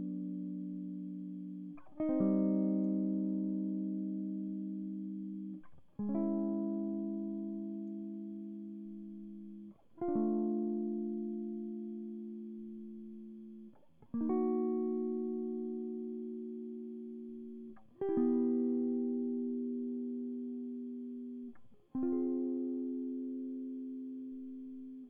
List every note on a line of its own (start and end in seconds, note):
2.00 5.63 D#4
2.09 5.60 C4
2.21 5.55 G3
6.00 9.75 G#3
6.09 9.63 C#4
6.15 9.72 E4
10.02 13.71 F4
10.09 12.93 D4
10.16 13.72 A3
14.14 17.74 A#3
14.21 17.74 D#4
14.30 17.76 F#4
18.02 21.53 G4
18.09 21.01 E4
18.18 21.50 B3
21.95 25.05 C4
22.03 24.71 F4